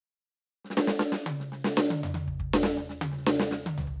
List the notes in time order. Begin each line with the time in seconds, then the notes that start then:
0.64 snare
0.70 snare
0.77 snare
0.87 snare
0.99 snare
1.12 snare
1.26 high tom
1.40 snare
1.52 snare
1.64 snare
1.77 snare
1.90 high tom
2.03 mid tom
2.14 high tom
2.28 kick
2.40 kick
2.53 snare
2.63 snare
2.77 snare
2.89 snare
3.01 high tom
3.12 snare
3.17 snare
3.21 snare
3.27 snare
3.40 snare
3.51 snare
3.66 high tom
3.78 floor tom
3.87 kick